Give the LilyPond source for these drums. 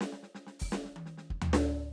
\new DrumStaff \drummode { \time 4/4 \tempo 4 = 125 sn16 sn16 sn16 sn16 sn16 <hho bd>16 <hhp sn>16 sn16 <tommh hh>16 sn16 sn16 bd16 tomfh16 sn8. | }